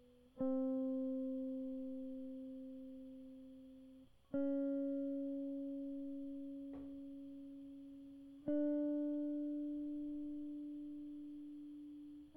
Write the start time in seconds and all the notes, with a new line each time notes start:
0.41 C4
4.34 C#4
8.48 D4